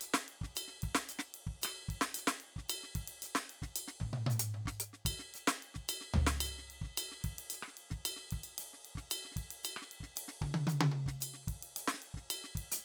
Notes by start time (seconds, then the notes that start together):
0.01 hi-hat pedal, ride bell
0.14 snare
0.28 ride
0.41 kick, snare
0.55 hi-hat pedal, ride bell
0.68 snare
0.82 kick, ride
0.90 kick
0.95 snare
1.09 hi-hat pedal, ride bell
1.19 snare
1.34 ride
1.47 kick
1.62 cross-stick, hi-hat pedal, ride bell
1.89 kick, ride
1.94 kick
2.01 snare
2.15 hi-hat pedal, ride bell
2.27 snare
2.40 ride
2.56 kick, snare
2.69 hi-hat pedal, ride bell
2.83 snare
2.94 kick, snare, ride
3.01 kick
3.08 ride
3.22 hi-hat pedal, ride bell
3.35 snare
3.50 ride
3.62 kick, snare
3.76 hi-hat pedal, ride bell
3.88 snare
4.00 kick, mid tom
4.08 kick
4.13 mid tom
4.27 hi-hat pedal, mid tom
4.40 closed hi-hat
4.54 mid tom
4.66 kick, snare
4.80 closed hi-hat, hi-hat pedal
4.93 snare
5.05 kick, ride bell
5.12 kick
5.19 snare
5.34 hi-hat pedal, ride
5.48 snare
5.62 ride
5.74 kick, snare
5.88 hi-hat pedal, ride bell
6.01 snare
6.14 kick, floor tom
6.22 kick
6.27 snare
6.36 snare
6.41 hi-hat pedal, ride bell
6.58 snare
6.70 ride
6.82 kick, snare
6.87 kick
6.97 hi-hat pedal, ride bell
7.12 snare
7.21 kick, cross-stick, ride
7.31 kick, snare
7.38 snare, ride
7.50 hi-hat pedal, ride bell
7.63 cross-stick
7.68 snare
7.77 ride
7.90 kick, snare
8.05 hi-hat pedal, ride bell
8.16 snare
8.31 kick, ride
8.38 kick
8.44 ride bell
8.58 hi-hat pedal, ride
8.73 snare
8.85 ride
8.95 kick, snare
9.10 hi-hat pedal, ride bell
9.25 snare
9.32 snare
9.36 kick, ride
9.49 snare, ride
9.64 hi-hat pedal, ride bell
9.76 cross-stick
9.82 snare
9.91 ride
10.01 kick, snare
10.16 hi-hat pedal, ride
10.28 snare
10.42 kick, high tom
10.54 open hi-hat, high tom
10.67 hi-hat pedal, high tom
10.81 high tom
10.92 high tom
11.06 kick, snare
11.11 kick
11.21 hi-hat pedal, ride bell
11.34 snare
11.43 cross-stick
11.48 kick, ride
11.54 kick
11.63 ride
11.76 hi-hat pedal, ride
11.88 snare
11.94 snare
12.02 ride
12.14 kick, snare
12.30 hi-hat pedal, ride bell
12.44 snare
12.55 kick, ride
12.61 kick
12.72 closed hi-hat